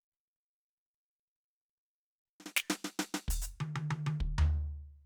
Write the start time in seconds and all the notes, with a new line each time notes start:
2.40 snare
2.46 snare
2.56 snare
2.70 snare
2.84 snare
2.99 snare
3.14 snare
3.28 open hi-hat, kick
3.42 hi-hat pedal
3.60 high tom
3.76 high tom
3.90 high tom
4.06 high tom
4.20 kick
4.38 floor tom